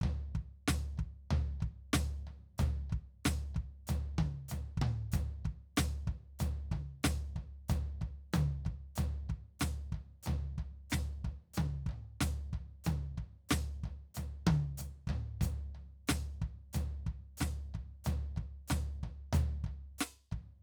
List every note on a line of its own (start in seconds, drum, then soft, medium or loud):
0.01 kick medium
0.01 floor tom loud
0.35 kick medium
0.35 floor tom soft
0.68 snare loud
0.68 floor tom loud
0.98 kick medium
0.98 floor tom soft
1.31 floor tom loud
1.60 kick medium
1.60 floor tom soft
1.93 snare loud
1.93 floor tom loud
2.27 floor tom soft
2.58 kick soft
2.58 floor tom loud
2.58 hi-hat pedal medium
2.90 kick medium
2.90 floor tom soft
3.25 snare loud
3.25 floor tom loud
3.25 hi-hat pedal medium
3.54 kick medium
3.54 floor tom soft
3.87 floor tom loud
3.87 hi-hat pedal medium
4.18 kick medium
4.18 floor tom medium
4.18 high tom medium
4.48 floor tom medium
4.48 hi-hat pedal medium
4.53 mid tom soft
4.77 kick medium
4.81 floor tom medium
4.81 mid tom loud
5.12 kick medium
5.12 floor tom medium
5.12 hi-hat pedal medium
5.45 kick medium
5.45 floor tom soft
5.76 snare loud
5.76 floor tom loud
5.76 hi-hat pedal medium
6.07 kick medium
6.07 floor tom soft
6.39 floor tom loud
6.39 hi-hat pedal medium
6.71 kick medium
6.71 floor tom soft
6.71 high tom medium
7.03 snare loud
7.03 floor tom loud
7.03 hi-hat pedal medium
7.36 kick soft
7.36 floor tom soft
7.68 kick soft
7.68 floor tom loud
7.68 hi-hat pedal medium
8.01 kick soft
8.01 floor tom soft
8.33 floor tom loud
8.33 hi-hat pedal medium
8.33 high tom loud
8.65 kick medium
8.65 floor tom soft
8.95 floor tom loud
8.95 hi-hat pedal medium
9.29 kick medium
9.29 floor tom soft
9.59 snare loud
9.59 floor tom medium
9.59 hi-hat pedal medium
9.92 kick soft
9.92 floor tom soft
10.23 hi-hat pedal medium
10.23 high tom medium
10.27 floor tom loud
10.58 kick soft
10.58 floor tom soft
10.90 snare medium
10.90 floor tom loud
10.90 hi-hat pedal medium
11.24 kick soft
11.24 floor tom soft
11.53 floor tom medium
11.53 hi-hat pedal medium
11.58 high tom medium
11.86 kick soft
11.86 mid tom soft
11.91 floor tom soft
12.20 snare loud
12.20 floor tom loud
12.20 hi-hat pedal medium
12.53 kick soft
12.53 floor tom soft
12.84 floor tom medium
12.84 hi-hat pedal medium
12.84 high tom medium
13.17 kick soft
13.17 floor tom soft
13.49 snare loud
13.49 floor tom loud
13.49 hi-hat pedal medium
13.83 kick soft
13.83 floor tom soft
14.14 floor tom medium
14.14 hi-hat pedal medium
14.47 kick soft
14.47 floor tom medium
14.47 high tom loud
14.77 floor tom medium
14.77 hi-hat pedal medium
15.07 kick soft
15.07 floor tom medium
15.07 mid tom medium
15.41 kick medium
15.41 floor tom loud
15.41 hi-hat pedal medium
15.75 floor tom soft
16.07 snare loud
16.07 floor tom medium
16.07 hi-hat pedal medium
16.42 kick medium
16.42 floor tom soft
16.73 floor tom loud
16.73 hi-hat pedal medium
17.06 kick soft
17.06 floor tom soft
17.37 snare loud
17.37 floor tom medium
17.37 hi-hat pedal medium
17.74 kick soft
17.74 floor tom soft
18.04 floor tom loud
18.04 hi-hat pedal medium
18.36 kick soft
18.36 floor tom soft
18.68 snare loud
18.68 floor tom loud
18.68 hi-hat pedal medium
19.03 kick soft
19.03 floor tom soft
19.33 floor tom loud
19.33 hi-hat pedal medium
19.64 kick soft
19.64 floor tom soft
19.98 snare loud
19.98 hi-hat pedal medium
19.98 percussion loud
20.31 kick soft
20.31 floor tom soft